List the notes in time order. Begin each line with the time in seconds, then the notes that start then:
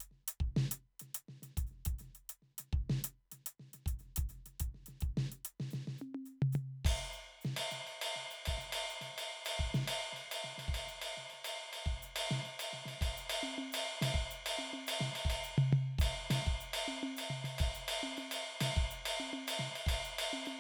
0.01 closed hi-hat
0.12 snare
0.28 closed hi-hat
0.41 kick
0.57 snare
0.72 closed hi-hat
1.00 snare, closed hi-hat
1.15 closed hi-hat
1.29 snare
1.43 snare, closed hi-hat
1.57 kick, open hi-hat
1.67 hi-hat pedal
1.72 snare
1.86 open hi-hat, kick
1.99 snare, hi-hat pedal
2.15 closed hi-hat
2.30 closed hi-hat
2.43 snare
2.59 closed hi-hat, snare
2.73 kick
2.90 snare
3.05 closed hi-hat
3.32 snare, closed hi-hat
3.47 closed hi-hat
3.60 snare
3.74 snare, closed hi-hat
3.86 kick, open hi-hat
3.99 snare, hi-hat pedal
4.17 open hi-hat, kick
4.29 snare, hi-hat pedal
4.46 snare, closed hi-hat
4.60 closed hi-hat, kick
4.75 snare
4.87 snare, closed hi-hat
5.01 kick, closed hi-hat
5.18 snare
5.32 closed hi-hat
5.45 closed hi-hat
5.60 snare
5.71 snare, hi-hat pedal
5.88 snare
5.99 hi-hat pedal, high tom
6.15 high tom
6.26 hi-hat pedal
6.42 floor tom
6.53 floor tom, hi-hat pedal
6.85 kick, crash, ride
7.13 hi-hat pedal
7.42 snare, hi-hat pedal
7.57 ride
7.71 snare, hi-hat pedal
7.85 snare, ride
8.02 hi-hat pedal, ride
8.16 snare
8.31 hi-hat pedal, ride
8.46 kick, ride
8.58 snare, hi-hat pedal
8.73 ride
8.90 hi-hat pedal
9.02 snare, ride
9.18 hi-hat pedal, ride
9.45 hi-hat pedal, ride
9.60 kick
9.75 snare, hi-hat pedal
9.88 ride
10.13 snare, ride
10.32 hi-hat pedal, ride
10.45 snare
10.58 snare, ride
10.69 kick
10.75 ride
10.87 snare, hi-hat pedal
11.02 ride
11.18 snare
11.30 snare, ride
11.45 hi-hat pedal, ride
11.73 ride
11.86 kick
12.03 hi-hat pedal
12.16 ride
12.31 snare
12.46 snare, ride
12.60 hi-hat pedal, ride
12.74 snare
12.86 snare, ride
13.02 kick, ride
13.17 hi-hat pedal
13.30 ride
13.44 high tom
13.59 high tom
13.73 hi-hat pedal, ride
14.02 snare, ride
14.15 kick
14.31 hi-hat pedal
14.46 ride
14.59 high tom
14.74 high tom
14.87 hi-hat pedal, ride
15.01 snare
15.16 ride
15.25 kick
15.30 ride
15.44 hi-hat pedal
15.58 floor tom
15.73 floor tom
15.99 kick, hi-hat pedal, ride
16.31 snare, ride
16.47 kick
16.61 hi-hat pedal
16.74 ride
16.88 high tom
17.04 high tom
17.17 hi-hat pedal, ride
17.31 floor tom
17.45 floor tom, ride
17.59 kick, ride
17.75 hi-hat pedal
17.89 ride
18.04 high tom
18.17 high tom, ride
18.32 hi-hat pedal, ride
18.61 snare, ride
18.77 kick
18.91 hi-hat pedal
19.06 ride
19.20 high tom
19.34 high tom
19.48 hi-hat pedal, ride
19.60 snare
19.76 ride
19.87 kick, ride
20.05 hi-hat pedal
20.19 ride
20.34 high tom
20.46 high tom, ride